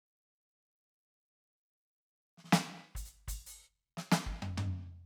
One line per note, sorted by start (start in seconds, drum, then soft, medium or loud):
2.37 snare soft
2.44 snare soft
2.47 snare soft
2.52 snare loud
2.95 open hi-hat medium
2.95 kick soft
3.05 hi-hat pedal medium
3.28 open hi-hat medium
3.28 kick soft
3.46 hi-hat pedal medium
3.97 snare medium
4.12 snare loud
4.26 kick medium
4.42 closed hi-hat soft
4.42 high tom loud
4.57 closed hi-hat soft
4.57 high tom loud